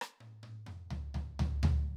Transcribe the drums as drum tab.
SD |r---------------|
T1 |-go-------------|
T2 |---o------------|
FT |----oooo--------|